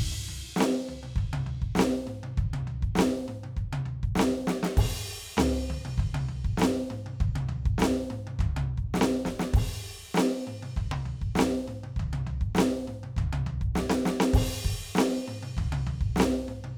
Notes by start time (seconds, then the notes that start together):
0.12 high tom
0.28 floor tom
0.56 snare, hi-hat pedal
0.60 snare
0.89 floor tom
1.03 high tom
1.16 kick, floor tom
1.33 high tom
1.46 floor tom
1.62 kick
1.75 snare
1.79 snare
2.07 mid tom
2.23 high tom
2.37 kick, floor tom
2.53 high tom
2.67 floor tom
2.82 kick
2.95 snare
2.99 snare
3.28 mid tom
3.43 high tom
3.56 kick, floor tom
3.73 high tom
3.85 floor tom
4.03 kick
4.15 snare
4.19 snare
4.47 snare
4.63 snare
4.77 kick, crash
5.37 snare, floor tom
5.70 floor tom
5.85 high tom
5.98 kick, floor tom
6.14 high tom
6.29 floor tom
6.44 kick
6.57 snare
6.62 snare
6.90 mid tom
7.06 high tom
7.20 kick, floor tom
7.35 high tom
7.49 floor tom
7.65 kick
7.78 snare
7.82 snare
8.10 mid tom
8.27 high tom
8.39 kick, floor tom
8.56 high tom
8.77 kick
8.94 snare
9.01 snare
9.25 kick, snare
9.39 snare
9.54 kick, snare, crash
10.14 snare, hi-hat pedal
10.17 snare
10.47 mid tom
10.62 high tom
10.76 kick, floor tom
10.91 high tom
11.05 floor tom
11.21 kick
11.35 snare
11.39 snare
11.68 mid tom
11.83 high tom
11.96 kick, floor tom
12.13 high tom
12.27 floor tom
12.41 kick
12.55 snare
12.58 snare
12.87 mid tom
13.03 high tom
13.16 kick, floor tom
13.33 high tom
13.46 floor tom
13.61 kick
13.75 snare
13.90 snare
14.05 snare
14.20 snare
14.33 kick, crash
14.64 kick
14.95 snare
14.98 snare
15.28 mid tom
15.43 high tom
15.57 kick, floor tom
15.72 high tom
15.87 floor tom
16.01 kick
16.16 snare
16.20 snare
16.48 mid tom
16.64 high tom